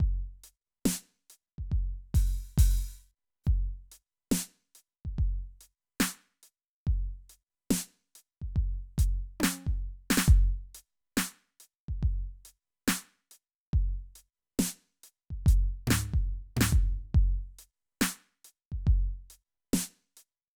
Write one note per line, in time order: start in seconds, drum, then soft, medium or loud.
0.01 kick medium
0.01 crash soft
0.44 closed hi-hat medium
0.86 snare loud
1.31 closed hi-hat medium
1.59 kick soft
1.73 kick medium
1.73 crash soft
2.15 open hi-hat medium
2.15 kick medium
2.15 snare soft
2.59 open hi-hat loud
2.59 kick loud
3.45 kick medium
3.45 hi-hat pedal soft
3.50 crash soft
3.93 closed hi-hat medium
4.32 snare loud
4.76 closed hi-hat medium
5.06 kick soft
5.19 kick medium
5.19 crash soft
5.19 ride soft
5.62 closed hi-hat medium
6.01 snare loud
6.44 closed hi-hat medium
6.88 kick medium
6.88 snare soft
6.88 crash soft
6.88 ride soft
7.30 closed hi-hat medium
7.71 snare loud
8.16 closed hi-hat medium
8.43 kick soft
8.57 kick medium
8.57 crash soft
8.57 ride soft
8.99 closed hi-hat loud
8.99 kick medium
9.41 snare loud
9.41 high tom loud
9.68 kick medium
10.11 snare loud
10.18 snare loud
10.29 kick loud
10.76 closed hi-hat loud
11.18 snare loud
11.61 closed hi-hat medium
11.89 kick soft
12.04 kick medium
12.04 snare soft
12.04 crash soft
12.04 ride soft
12.46 closed hi-hat medium
12.89 snare loud
13.32 closed hi-hat medium
13.74 kick medium
13.74 snare soft
13.74 crash soft
13.74 ride soft
14.16 closed hi-hat medium
14.60 snare loud
15.04 closed hi-hat medium
15.31 kick soft
15.47 closed hi-hat loud
15.47 kick loud
15.47 snare soft
15.88 snare loud
15.88 floor tom loud
16.14 kick medium
16.58 floor tom loud
16.62 snare loud
16.73 kick medium
17.15 kick loud
17.15 snare soft
17.15 crash soft
17.15 ride soft
17.59 closed hi-hat medium
18.02 snare loud
18.45 closed hi-hat medium
18.73 kick soft
18.88 kick medium
19.31 closed hi-hat medium
19.74 snare loud
20.18 closed hi-hat medium